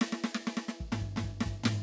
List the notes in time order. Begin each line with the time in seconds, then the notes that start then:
0.01 snare
0.12 snare
0.24 snare
0.34 snare
0.47 snare
0.57 snare
0.68 snare
0.80 kick
0.92 snare, floor tom
1.01 kick
1.16 snare, floor tom
1.24 kick
1.41 snare, floor tom
1.46 kick
1.63 snare, floor tom